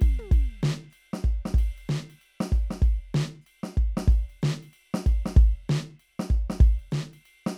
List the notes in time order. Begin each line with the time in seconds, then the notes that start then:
0.01 kick, ride
0.19 mid tom
0.32 kick, ride
0.63 snare, hi-hat pedal
0.90 hi-hat pedal, ride bell
1.14 snare
1.24 kick
1.46 snare
1.54 kick
1.59 ride
1.78 ride
1.89 snare, hi-hat pedal
2.10 ride bell
2.21 ride bell
2.41 snare
2.52 kick, ride bell
2.71 snare
2.82 kick, ride bell
3.15 snare, hi-hat pedal
3.42 hi-hat pedal
3.47 ride bell
3.64 snare
3.77 kick
3.97 snare
4.08 kick, ride bell
4.30 ride
4.42 snare, hi-hat pedal
4.63 ride bell
4.73 ride bell
4.94 snare
5.06 kick, ride
5.26 snare
5.37 kick, ride bell
5.69 snare, hi-hat pedal
6.00 ride bell
6.20 snare
6.30 kick
6.50 snare
6.61 kick, ride bell
6.79 ride bell
6.92 snare, hi-hat pedal
7.13 ride bell
7.26 ride bell
7.47 snare